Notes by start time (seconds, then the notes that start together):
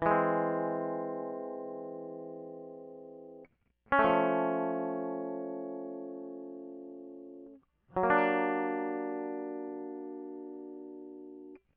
0.03 E3 G#3
0.12 C4
3.93 C#4
4.00 A3
4.06 F3
7.98 F#3
8.04 A#3
8.11 D4